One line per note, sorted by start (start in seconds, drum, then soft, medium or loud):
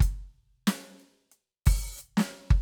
0.01 kick loud
0.01 closed hi-hat loud
0.68 snare loud
0.68 closed hi-hat loud
1.00 closed hi-hat soft
1.32 closed hi-hat soft
1.66 open hi-hat loud
1.66 kick loud
1.98 hi-hat pedal loud
2.18 snare loud
2.20 snare loud
2.51 kick loud